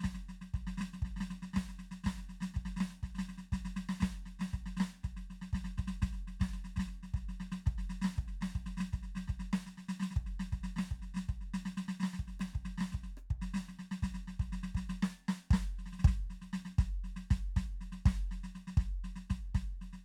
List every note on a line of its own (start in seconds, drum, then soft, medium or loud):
0.01 snare soft
0.04 kick soft
0.04 snare medium
0.15 snare soft
0.29 snare soft
0.42 snare soft
0.54 kick soft
0.54 snare soft
0.67 snare medium
0.78 snare medium
0.81 snare medium
0.94 snare soft
1.02 kick soft
1.02 snare soft
1.17 snare soft
1.21 snare medium
1.31 snare soft
1.43 snare soft
1.54 snare medium
1.57 kick soft
1.57 snare medium
1.69 snare soft
1.79 snare soft
1.92 snare soft
2.04 kick soft
2.04 snare medium
2.07 snare medium
2.18 snare soft
2.29 snare soft
2.41 snare soft
2.41 snare medium
2.54 kick soft
2.54 snare soft
2.66 snare medium
2.77 snare medium
2.81 snare medium
2.91 snare soft
3.03 kick soft
3.03 snare soft
3.15 snare soft
3.19 snare medium
3.29 snare soft
3.38 snare soft
3.53 kick soft
3.53 snare medium
3.65 snare medium
3.77 snare medium
3.89 snare medium
4.01 kick medium
4.01 snare medium
4.03 snare loud
4.15 snare soft
4.26 snare soft
4.40 snare soft
4.41 snare medium
4.54 kick soft
4.54 snare soft
4.66 snare soft
4.77 snare medium
4.81 snare loud
4.94 snare soft
5.04 kick soft
5.04 snare soft
5.17 snare soft
5.30 snare soft
5.42 snare soft
5.53 kick soft
5.53 snare medium
5.65 snare soft
5.78 kick soft
5.78 snare soft
5.88 snare medium
6.02 kick medium
6.02 snare medium
6.13 snare soft
6.28 snare soft
6.40 kick medium
6.40 snare soft
6.42 snare medium
6.54 snare soft
6.65 snare soft
6.77 kick soft
6.77 snare medium
6.80 snare medium
6.88 snare soft
7.03 snare soft
7.14 kick soft
7.14 snare soft
7.29 snare soft
7.40 snare soft
7.52 snare medium
7.66 kick medium
7.66 snare soft
7.79 snare soft
7.90 snare medium
8.02 snare medium
8.05 snare medium
8.16 kick medium
8.16 snare soft
8.28 snare soft
8.41 snare soft
8.41 snare medium
8.55 kick soft
8.55 snare soft
8.66 snare soft
8.78 snare medium
8.81 snare medium
8.93 kick soft
8.93 snare soft
9.03 snare soft
9.15 snare soft
9.17 snare medium
9.28 kick soft
9.28 snare soft
9.40 snare soft
9.53 snare loud
9.67 snare soft
9.78 snare soft
9.89 snare medium
10.00 snare medium
10.03 snare medium
10.11 snare soft
10.17 kick medium
10.27 snare soft
10.40 snare medium
10.53 kick soft
10.53 snare soft
10.64 snare medium
10.77 snare medium
10.79 snare medium
10.91 kick soft
10.91 snare soft
11.02 snare soft
11.15 snare soft
11.17 snare medium
11.29 kick soft
11.29 snare soft
11.41 snare soft
11.54 snare medium
11.66 snare medium
11.78 snare medium
11.89 snare medium
12.00 snare medium
12.04 snare medium
12.14 snare medium
12.20 kick soft
12.28 snare soft
12.40 cross-stick soft
12.40 snare medium
12.54 kick soft
12.54 snare soft
12.65 snare soft
12.78 snare medium
12.81 snare medium
12.92 kick soft
12.92 snare soft
13.04 snare soft
13.17 cross-stick soft
13.31 kick soft
13.31 cross-stick soft
13.42 snare medium
13.54 snare medium
13.56 snare medium
13.69 snare soft
13.79 snare soft
13.92 snare medium
14.03 kick soft
14.03 snare medium
14.15 snare soft
14.28 snare soft
14.40 kick medium
14.40 snare soft
14.53 snare medium
14.64 snare medium
14.75 kick soft
14.75 snare medium
14.90 snare medium
15.03 snare loud
15.29 snare medium
15.51 kick medium
15.51 snare medium
15.54 snare loud
15.79 snare soft
15.86 snare soft
15.93 snare soft
16.00 snare soft
16.05 kick loud
16.05 snare medium
16.30 snare soft
16.42 snare soft
16.54 snare medium
16.66 snare soft
16.79 kick medium
16.79 snare medium
17.04 snare soft
17.17 snare soft
17.31 kick medium
17.31 snare medium
17.57 kick medium
17.57 snare medium
17.81 snare soft
17.93 snare soft
18.06 kick medium
18.06 snare medium
18.32 snare soft
18.44 snare soft
18.55 snare soft
18.68 snare soft
18.78 kick medium
18.78 snare medium
19.04 snare soft
19.16 snare soft
19.30 kick medium
19.30 snare medium
19.55 kick medium
19.55 snare medium
19.82 snare soft
19.93 snare soft